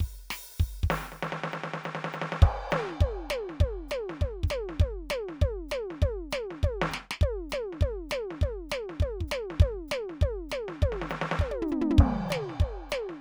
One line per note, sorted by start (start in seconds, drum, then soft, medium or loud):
0.01 open hi-hat medium
0.01 kick medium
0.31 open hi-hat loud
0.31 snare loud
0.52 open hi-hat medium
0.60 open hi-hat medium
0.60 kick medium
0.84 kick medium
0.91 open hi-hat medium
0.91 snare loud
1.13 snare soft
1.23 snare loud
1.23 hi-hat pedal soft
1.33 snare medium
1.44 snare medium
1.52 snare medium
1.52 hi-hat pedal soft
1.64 snare medium
1.74 snare medium
1.84 snare medium
1.84 hi-hat pedal soft
1.95 snare medium
2.05 snare medium
2.13 snare medium
2.13 hi-hat pedal medium
2.22 snare medium
2.33 snare medium
2.43 kick loud
2.43 crash loud
2.71 snare loud
2.71 hi-hat pedal medium
2.71 high tom loud
2.90 snare soft
3.01 kick loud
3.01 high tom loud
3.30 snare loud
3.30 hi-hat pedal medium
3.30 high tom loud
3.50 snare soft
3.61 kick loud
3.61 high tom loud
3.89 snare loud
3.89 hi-hat pedal medium
3.89 high tom loud
4.10 snare medium
4.22 kick medium
4.22 high tom medium
4.44 kick medium
4.48 snare loud
4.48 hi-hat pedal medium
4.48 high tom loud
4.70 snare soft
4.80 kick loud
4.80 high tom medium
5.10 snare loud
5.10 hi-hat pedal medium
5.10 high tom loud
5.29 snare soft
5.42 kick medium
5.42 high tom loud
5.69 snare loud
5.69 hi-hat pedal medium
5.69 high tom loud
5.91 snare soft
6.03 kick medium
6.03 high tom loud
6.31 snare loud
6.31 hi-hat pedal medium
6.31 high tom loud
6.51 snare soft
6.64 kick medium
6.64 high tom loud
6.82 snare loud
6.89 kick soft
6.89 hi-hat pedal medium
6.94 snare loud
7.12 snare loud
7.22 kick medium
7.22 high tom loud
7.50 snare loud
7.50 hi-hat pedal medium
7.50 high tom loud
7.73 snare soft
7.82 kick medium
7.82 high tom loud
8.10 snare loud
8.10 hi-hat pedal medium
8.10 high tom loud
8.31 snare soft
8.42 kick medium
8.42 high tom loud
8.70 snare loud
8.70 hi-hat pedal medium
8.70 high tom loud
8.90 snare soft
9.01 kick medium
9.01 high tom loud
9.21 kick medium
9.28 snare loud
9.28 hi-hat pedal medium
9.28 high tom loud
9.51 snare soft
9.60 kick loud
9.60 high tom loud
9.88 snare loud
9.88 hi-hat pedal medium
9.88 high tom loud
10.10 snare soft
10.22 kick medium
10.22 high tom loud
10.50 snare loud
10.50 hi-hat pedal medium
10.50 high tom loud
10.69 snare medium
10.83 kick medium
10.83 high tom loud
10.93 snare medium
11.02 snare medium
11.10 snare medium
11.10 hi-hat pedal medium
11.22 snare loud
11.32 snare loud
11.40 kick medium
11.40 high tom loud
11.52 high tom loud
11.62 floor tom loud
11.68 floor tom loud
11.68 hi-hat pedal medium
11.81 floor tom loud
11.91 floor tom loud
11.99 kick loud
11.99 crash loud
12.29 snare loud
12.29 hi-hat pedal medium
12.29 high tom loud
12.50 snare soft
12.61 kick medium
12.61 high tom medium
12.90 snare loud
12.90 hi-hat pedal medium
12.90 high tom loud
13.10 snare soft